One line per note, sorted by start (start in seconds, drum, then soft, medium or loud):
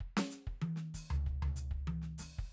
0.00 kick soft
0.17 snare medium
0.31 snare soft
0.31 hi-hat pedal medium
0.47 kick soft
0.62 high tom loud
0.76 snare soft
0.94 kick soft
0.94 snare soft
0.94 hi-hat pedal medium
1.10 floor tom loud
1.26 kick soft
1.26 snare soft
1.42 floor tom loud
1.56 snare soft
1.56 hi-hat pedal medium
1.71 kick soft
1.87 high tom medium
2.02 snare soft
2.18 kick soft
2.18 snare soft
2.18 hi-hat pedal medium
2.39 kick soft